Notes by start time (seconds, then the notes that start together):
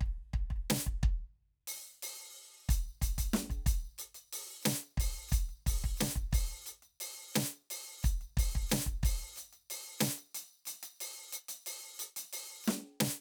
0.01 kick, cross-stick, crash
0.05 high tom, ride
0.34 kick
0.38 snare, crash
0.51 kick
0.56 kick, snare, crash, ride
0.70 snare
0.87 kick
1.03 kick
1.68 percussion
2.03 percussion
2.69 closed hi-hat, kick, hi-hat pedal
3.02 closed hi-hat, kick
3.18 closed hi-hat, kick
3.34 snare
3.50 kick, closed hi-hat
3.66 kick, percussion
3.98 hi-hat pedal, percussion
4.15 closed hi-hat
4.33 percussion
4.63 closed hi-hat, snare, hi-hat pedal
4.83 closed hi-hat
4.98 kick, percussion
5.29 closed hi-hat, kick, hi-hat pedal
5.49 closed hi-hat
5.67 kick, percussion
5.84 kick
5.98 snare, hi-hat pedal
6.02 closed hi-hat
6.16 kick, closed hi-hat
6.32 kick, hi-hat pedal, percussion
6.66 hi-hat pedal, percussion
6.83 closed hi-hat
7.00 percussion
7.35 closed hi-hat, snare, hi-hat pedal
7.53 closed hi-hat
7.71 percussion
8.03 closed hi-hat, kick, hi-hat pedal
8.21 closed hi-hat
8.37 kick, percussion
8.55 kick
8.70 closed hi-hat, snare, hi-hat pedal
8.86 kick, closed hi-hat
9.03 kick, hi-hat pedal, percussion
9.36 closed hi-hat, hi-hat pedal
9.53 closed hi-hat
9.70 percussion
10.00 closed hi-hat, snare, hi-hat pedal
10.18 closed hi-hat
10.35 percussion
10.66 closed hi-hat, hi-hat pedal
10.83 closed hi-hat
11.01 percussion
11.33 hi-hat pedal, percussion
11.49 closed hi-hat
11.66 percussion
11.99 hi-hat pedal, percussion
12.17 closed hi-hat
12.33 percussion
12.64 snare, hi-hat pedal
13.01 snare